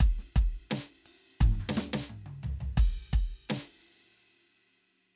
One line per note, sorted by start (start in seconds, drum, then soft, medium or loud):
0.01 kick loud
0.01 ride medium
0.19 snare soft
0.36 kick loud
0.36 ride medium
0.71 snare loud
0.71 ride medium
1.06 ride medium
1.41 kick loud
1.41 mid tom loud
1.52 snare soft
1.60 percussion soft
1.69 snare loud
1.78 snare loud
1.94 snare loud
2.10 mid tom medium
2.26 high tom medium
2.44 floor tom medium
2.61 floor tom medium
2.78 kick loud
2.78 crash medium
3.13 kick loud
3.50 snare loud
3.50 ride medium